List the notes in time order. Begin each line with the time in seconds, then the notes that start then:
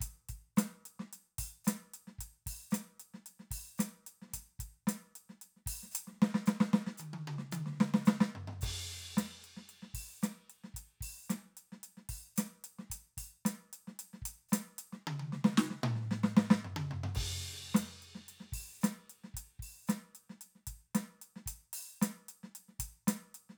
0.01 kick, closed hi-hat
0.29 kick, open hi-hat
0.57 snare, closed hi-hat, hi-hat pedal
0.86 closed hi-hat
1.00 snare
1.13 closed hi-hat
1.39 kick, open hi-hat
1.65 snare, closed hi-hat, hi-hat pedal
1.94 closed hi-hat
2.07 snare
2.19 kick, closed hi-hat
2.47 kick, open hi-hat
2.71 snare, closed hi-hat, hi-hat pedal
3.00 closed hi-hat
3.14 snare
3.26 closed hi-hat
3.40 snare
3.51 kick, open hi-hat
3.78 snare, closed hi-hat, hi-hat pedal
4.07 closed hi-hat
4.22 snare
4.27 snare
4.30 kick, snare
4.34 snare, closed hi-hat
4.60 kick, closed hi-hat
4.87 snare, closed hi-hat
5.16 closed hi-hat
5.30 snare
5.42 closed hi-hat
5.57 snare
5.67 kick, open hi-hat
5.83 snare
5.92 closed hi-hat, hi-hat pedal
6.07 snare
6.12 snare
6.17 snare
6.22 snare
6.35 snare
6.46 snare, hi-hat pedal
6.61 snare
6.74 snare
6.87 snare
6.98 hi-hat pedal, high tom
7.14 high tom
7.28 high tom
7.39 snare
7.52 hi-hat pedal, high tom
7.66 snare
7.71 snare
7.75 snare
7.81 snare
7.94 snare
8.06 snare, hi-hat pedal
8.21 snare
8.35 floor tom
8.48 floor tom
8.61 kick, hi-hat pedal, ride
9.17 snare, closed hi-hat
9.44 closed hi-hat
9.57 snare
9.69 closed hi-hat
9.83 snare
9.94 kick, open hi-hat
10.22 snare, closed hi-hat, hi-hat pedal
10.50 closed hi-hat
10.64 snare
10.74 kick, closed hi-hat
11.01 kick, open hi-hat
11.30 snare, closed hi-hat, hi-hat pedal
11.57 closed hi-hat
11.72 snare
11.83 closed hi-hat
11.97 snare
12.09 kick, open hi-hat
12.36 snare, closed hi-hat, hi-hat pedal
12.64 closed hi-hat
12.79 snare
12.90 kick, closed hi-hat
13.18 kick, open hi-hat
13.46 snare, closed hi-hat, hi-hat pedal
13.73 closed hi-hat
13.88 snare
13.99 closed hi-hat
14.14 snare
14.22 kick, closed hi-hat
14.49 snare, hi-hat pedal
14.53 closed hi-hat
14.79 closed hi-hat
14.93 snare
15.07 high tom
15.20 high tom
15.33 snare
15.45 snare
15.58 snare
15.71 snare
15.84 mid tom
15.96 snare
16.01 snare
16.05 snare
16.11 snare
16.24 snare
16.37 snare
16.51 snare
16.65 floor tom
16.77 high tom
16.91 floor tom
17.04 floor tom
17.15 kick, ride
17.75 snare, closed hi-hat
18.02 closed hi-hat
18.15 snare
18.29 closed hi-hat
18.40 snare
18.53 kick, open hi-hat
18.81 snare, closed hi-hat, hi-hat pedal
19.10 closed hi-hat
19.24 snare
19.34 kick, closed hi-hat
19.60 kick, open hi-hat
19.88 snare, closed hi-hat, hi-hat pedal
20.15 closed hi-hat
20.30 snare
20.41 closed hi-hat
20.55 snare
20.67 kick, closed hi-hat
20.95 snare, closed hi-hat
21.22 closed hi-hat
21.36 snare
21.46 kick, closed hi-hat
21.73 open hi-hat
22.02 snare, closed hi-hat, hi-hat pedal
22.29 closed hi-hat
22.44 snare
22.55 closed hi-hat
22.69 snare
22.80 kick, closed hi-hat
23.08 snare, closed hi-hat
23.35 closed hi-hat
23.50 snare